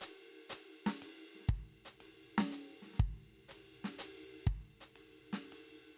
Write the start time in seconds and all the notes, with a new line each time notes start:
0.01 hi-hat pedal, ride
0.50 hi-hat pedal, ride
0.86 snare, ride
1.02 ride
1.35 snare
1.38 snare
1.40 snare
1.49 kick, ride
1.85 hi-hat pedal
2.01 ride
2.38 snare, ride
2.51 hi-hat pedal, ride
2.82 snare
2.87 snare
2.91 snare
2.94 snare
3.00 kick, ride
3.49 hi-hat pedal, ride
3.84 snare, ride
3.99 hi-hat pedal, ride
4.47 kick, ride
4.81 hi-hat pedal
4.96 ride
5.33 snare, ride
5.52 ride